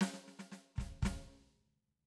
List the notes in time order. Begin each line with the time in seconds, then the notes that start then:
0.01 snare
0.14 snare
0.28 snare
0.39 snare
0.52 snare
0.76 kick, snare
0.79 snare
1.02 kick, snare
1.05 snare